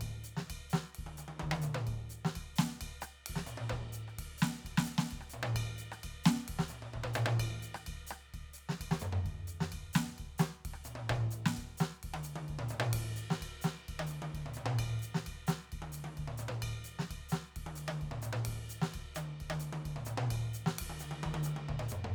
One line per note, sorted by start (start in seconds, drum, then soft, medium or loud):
0.01 kick soft
0.01 ride bell medium
0.24 hi-hat pedal medium
0.37 snare medium
0.50 kick soft
0.50 ride bell medium
0.70 snare medium
0.70 hi-hat pedal medium
0.95 kick soft
0.95 ride medium
1.07 high tom medium
1.17 hi-hat pedal medium
1.17 high tom soft
1.28 high tom medium
1.40 kick soft
1.40 high tom loud
1.48 kick soft
1.48 high tom loud
1.62 hi-hat pedal medium
1.62 mid tom medium
1.75 mid tom loud
1.87 kick soft
1.87 ride bell medium
1.94 kick soft
2.10 hi-hat pedal medium
2.10 ride soft
2.25 snare medium
2.35 kick soft
2.35 ride bell medium
2.43 kick soft
2.56 snare loud
2.56 hi-hat pedal medium
2.81 kick soft
2.81 ride bell medium
3.01 cross-stick medium
3.01 hi-hat pedal medium
3.26 kick soft
3.26 ride loud
3.36 snare medium
3.47 hi-hat pedal medium
3.47 mid tom medium
3.57 mid tom medium
3.70 kick soft
3.70 mid tom medium
3.78 kick soft
3.92 hi-hat pedal medium
4.08 cross-stick soft
4.19 kick soft
4.19 ride medium
4.38 hi-hat pedal medium
4.42 snare loud
4.65 kick soft
4.65 ride bell medium
4.78 snare loud
4.84 hi-hat pedal medium
4.84 ride medium
4.98 snare medium
5.11 kick soft
5.11 ride bell medium
5.19 kick soft
5.19 cross-stick soft
5.30 hi-hat pedal medium
5.34 mid tom medium
5.43 mid tom loud
5.55 kick soft
5.55 ride bell loud
5.60 kick soft
5.77 hi-hat pedal medium
5.77 ride soft
5.92 cross-stick medium
6.03 kick soft
6.03 ride bell medium
6.24 snare loud
6.24 hi-hat pedal medium
6.48 kick soft
6.48 ride medium
6.55 kick soft
6.55 snare medium
6.68 hi-hat pedal medium
6.68 mid tom medium
6.82 mid tom medium
6.94 kick soft
6.94 mid tom medium
7.04 mid tom medium
7.14 hi-hat pedal medium
7.14 mid tom loud
7.26 mid tom loud
7.39 kick soft
7.39 ride bell loud
7.60 hi-hat pedal medium
7.60 ride soft
7.75 cross-stick medium
7.87 kick soft
7.87 ride bell medium
7.94 kick soft
8.07 cross-stick medium
8.07 hi-hat pedal medium
8.34 kick soft
8.34 ride bell soft
8.53 hi-hat pedal medium
8.58 ride soft
8.69 snare medium
8.81 kick soft
8.81 ride bell medium
8.91 snare medium
9.00 floor tom medium
9.00 hi-hat pedal medium
9.13 floor tom medium
9.25 kick soft
9.25 ride bell soft
9.31 kick soft
9.35 kick soft
9.47 hi-hat pedal medium
9.47 ride soft
9.61 snare medium
9.72 kick soft
9.72 ride bell medium
9.93 snare loud
9.93 hi-hat pedal medium
10.18 kick soft
10.18 ride bell soft
10.38 snare loud
10.38 hi-hat pedal medium
10.65 kick soft
10.65 ride medium
10.73 kick soft
10.73 cross-stick soft
10.84 hi-hat pedal medium
10.84 mid tom medium
11.10 kick soft
11.10 mid tom loud
11.31 hi-hat pedal medium
11.31 mid tom soft
11.46 snare medium
11.57 kick soft
11.57 ride bell medium
11.77 snare medium
11.77 hi-hat pedal medium
12.03 kick soft
12.03 ride medium
12.14 high tom medium
12.23 hi-hat pedal medium
12.23 ride medium
12.36 high tom loud
12.48 kick soft
12.48 ride bell soft
12.59 mid tom loud
12.69 hi-hat pedal medium
12.69 mid tom medium
12.80 mid tom loud
12.93 kick soft
12.93 ride loud
13.16 hi-hat pedal medium
13.30 snare medium
13.42 kick soft
13.42 ride bell medium
13.61 snare medium
13.61 hi-hat pedal medium
13.88 kick soft
13.88 ride bell medium
13.95 kick soft
13.99 high tom medium
14.07 hi-hat pedal medium
14.11 ride medium
14.22 high tom medium
14.34 kick soft
14.34 ride bell soft
14.40 kick soft
14.46 mid tom medium
14.54 hi-hat pedal medium
14.54 mid tom medium
14.66 mid tom loud
14.79 kick soft
14.79 ride bell loud
14.84 kick soft
14.99 hi-hat pedal medium
14.99 ride soft
15.15 snare medium
15.26 kick soft
15.26 ride bell medium
15.47 snare medium
15.47 hi-hat pedal medium
15.72 kick soft
15.72 ride bell medium
15.82 high tom medium
15.92 hi-hat pedal medium
15.92 ride medium
16.04 high tom medium
16.17 kick soft
16.17 ride bell soft
16.24 kick soft
16.24 mid tom medium
16.37 hi-hat pedal medium
16.37 mid tom medium
16.48 mid tom medium
16.55 mid tom soft
16.62 kick soft
16.62 ride bell loud
16.68 kick soft
16.84 hi-hat pedal medium
16.84 ride soft
16.99 snare medium
17.11 kick soft
17.11 ride bell medium
17.18 kick soft
17.29 snare medium
17.29 hi-hat pedal medium
17.56 kick soft
17.56 ride medium
17.66 high tom medium
17.75 hi-hat pedal medium
17.75 ride medium
17.88 high tom medium
18.01 kick soft
18.01 ride bell soft
18.08 kick soft
18.08 mid tom medium
18.22 hi-hat pedal medium
18.22 mid tom medium
18.33 mid tom loud
18.41 mid tom soft
18.41 ride loud
18.47 kick soft
18.66 hi-hat pedal medium
18.66 ride soft
18.82 snare medium
18.94 kick soft
18.94 ride bell medium
19.01 kick soft
19.15 hi-hat pedal medium
19.15 high tom medium
19.40 kick soft
19.40 ride bell soft
19.47 kick soft
19.47 high tom loud
19.60 hi-hat pedal medium
19.60 ride soft
19.73 high tom loud
19.85 kick soft
19.85 ride bell medium
19.96 mid tom medium
20.05 hi-hat pedal medium
20.05 mid tom medium
20.18 mid tom loud
20.31 kick soft
20.31 ride bell medium
20.37 kick soft
20.54 hi-hat pedal medium
20.54 ride soft
20.66 snare medium
20.79 kick soft
20.79 ride loud
20.87 kick soft
20.87 high tom medium
20.99 hi-hat pedal medium
20.99 high tom medium
21.11 high tom medium
21.23 kick soft
21.23 high tom loud
21.34 high tom loud
21.43 hi-hat pedal medium
21.43 high tom medium
21.56 high tom medium
21.69 kick soft
21.69 mid tom medium
21.76 kick soft
21.76 mid tom medium
21.89 floor tom medium
21.89 hi-hat pedal medium
22.04 floor tom loud